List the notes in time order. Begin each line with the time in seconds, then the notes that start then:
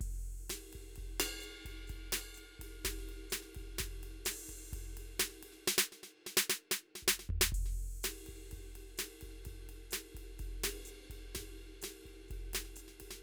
0.01 kick, crash
0.50 snare, hi-hat pedal, ride
0.73 kick, snare, ride
0.95 kick, hi-hat pedal, ride
1.03 kick
1.20 snare, ride bell
1.41 hi-hat pedal, ride
1.66 kick, ride
1.71 kick
1.88 kick, hi-hat pedal, ride
1.95 kick
2.13 snare, ride bell
2.34 hi-hat pedal, ride
2.60 kick, ride
2.84 kick, snare, hi-hat pedal, ride
2.90 kick
2.99 snare
3.09 ride
3.30 snare, hi-hat pedal, ride
3.43 snare
3.55 kick, ride
3.62 kick
3.77 kick, snare, hi-hat pedal, ride
3.86 kick
4.03 ride
4.26 snare, hi-hat pedal, ride
4.49 kick, ride
4.73 kick, ride
4.79 kick
4.97 ride
5.20 snare, ride
5.30 snare
5.43 ride
5.53 snare
5.68 snare
5.78 snare
5.92 snare
6.03 snare
6.27 snare
6.37 snare
6.50 snare
6.71 snare
6.96 snare
7.03 kick
7.08 snare
7.19 snare
7.29 kick, floor tom
7.36 kick
7.41 snare
7.52 kick, crash
7.60 kick
7.66 snare
8.04 snare, hi-hat pedal, ride
8.27 kick, ride
8.51 kick, hi-hat pedal, ride
8.58 kick
8.76 ride
8.98 snare, hi-hat pedal, ride
9.21 kick, ride
9.35 snare
9.38 snare
9.45 kick, hi-hat pedal, ride
9.52 kick
9.69 ride
9.91 snare, hi-hat pedal, ride
10.15 kick, ride
10.20 kick
10.39 kick, hi-hat pedal, ride
10.45 kick
10.64 snare, ride
10.85 hi-hat pedal, ride
10.95 snare
11.10 kick, ride
11.15 kick
11.34 kick, snare, hi-hat pedal, ride
11.41 kick
11.82 snare, hi-hat pedal, ride
12.06 kick, ride
12.28 kick, hi-hat pedal, ride
12.54 snare, ride
12.65 snare
12.76 hi-hat pedal, ride
12.88 snare
13.00 kick, ride
13.11 snare